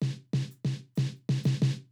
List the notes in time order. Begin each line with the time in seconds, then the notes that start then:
0.02 snare
0.33 snare
0.51 hi-hat pedal
0.65 snare
0.95 snare, hi-hat pedal
1.16 hi-hat pedal
1.29 snare
1.43 snare, hi-hat pedal
1.62 snare